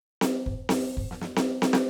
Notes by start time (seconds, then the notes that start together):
0.21 closed hi-hat, snare
0.46 kick
0.69 open hi-hat, snare
0.97 kick
1.11 snare
1.21 snare
1.37 snare
1.62 snare
1.67 hi-hat pedal
1.73 snare